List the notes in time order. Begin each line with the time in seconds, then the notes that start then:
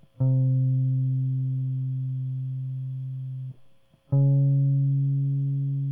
0.22 C3
4.14 C#3